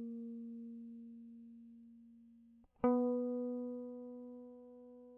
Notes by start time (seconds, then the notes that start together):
2.85 B3
3.15 B3